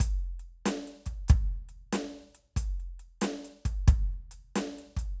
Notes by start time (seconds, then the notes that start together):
0.00 kick, closed hi-hat
0.26 closed hi-hat
0.40 closed hi-hat
0.66 snare, closed hi-hat
0.87 closed hi-hat
1.06 kick, closed hi-hat
1.28 kick, closed hi-hat
1.69 closed hi-hat
1.93 snare, closed hi-hat
2.35 closed hi-hat
2.56 kick, closed hi-hat
2.80 closed hi-hat
2.99 closed hi-hat
3.21 snare, closed hi-hat
3.45 closed hi-hat
3.65 kick, closed hi-hat
3.88 kick, closed hi-hat
4.13 closed hi-hat
4.31 closed hi-hat
4.56 snare, closed hi-hat
4.79 closed hi-hat
4.97 kick, closed hi-hat